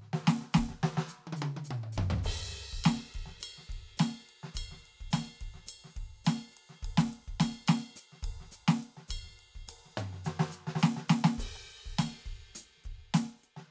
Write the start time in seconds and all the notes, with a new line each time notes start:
0.02 snare
0.14 snare
0.28 snare
0.42 snare
0.54 snare, hi-hat pedal
0.58 kick
0.67 kick, snare
0.84 snare
0.98 snare
1.09 hi-hat pedal
1.28 high tom
1.33 hi-hat pedal, high tom
1.43 high tom
1.57 high tom
1.65 hi-hat pedal
1.71 mid tom
1.84 mid tom
1.93 hi-hat pedal
1.97 kick, floor tom
2.11 floor tom
2.19 floor tom
2.24 kick, hi-hat pedal, crash
2.51 snare
2.73 kick
2.82 kick, ride bell
2.86 snare, hi-hat pedal
2.98 snare
3.15 kick, ride
3.21 kick
3.26 snare
3.41 hi-hat pedal, ride bell
3.58 snare
3.70 kick, ride
3.76 kick
3.98 snare, hi-hat pedal, ride bell
4.30 ride
4.44 snare
4.55 kick, hi-hat pedal, ride bell
4.61 kick
4.64 kick
4.72 snare
4.86 ride
5.01 kick
5.11 snare, hi-hat pedal, ride bell
5.25 snare
5.42 kick, ride
5.55 snare
5.67 hi-hat pedal, ride bell
5.85 snare
5.97 kick, ride
6.03 kick
6.25 snare, hi-hat pedal, ride bell
6.51 hi-hat pedal
6.58 ride
6.70 snare
6.83 kick, ride
6.89 kick
6.92 kick
6.98 snare
7.14 ride
7.28 kick
7.40 snare, hi-hat pedal, ride bell
7.68 snare, hi-hat pedal, ride bell
7.96 hi-hat pedal, ride
8.13 snare
8.20 kick, hi-hat pedal
8.25 ride
8.30 kick
8.34 kick
8.41 snare
8.52 hi-hat pedal
8.56 ride
8.69 snare
8.84 ride
8.98 snare
9.09 kick, hi-hat pedal, ride bell
9.16 kick
9.20 kick
9.25 snare
9.40 ride
9.56 kick, snare
9.68 hi-hat pedal, ride
9.86 snare
9.98 hi-hat pedal, mid tom
10.14 snare
10.25 snare, hi-hat pedal
10.40 snare
10.52 hi-hat pedal
10.68 snare
10.76 snare, hi-hat pedal
10.84 snare
10.97 snare
11.09 snare, hi-hat pedal
11.25 snare
11.39 kick, hi-hat pedal, crash
11.45 kick
11.56 cross-stick
11.66 snare
11.86 kick
11.99 snare, hi-hat pedal, ride bell
12.26 kick
12.32 kick
12.48 snare
12.53 closed hi-hat, hi-hat pedal
12.78 snare
12.85 kick, closed hi-hat
13.15 closed hi-hat, snare
13.39 hi-hat pedal
13.44 closed hi-hat
13.57 snare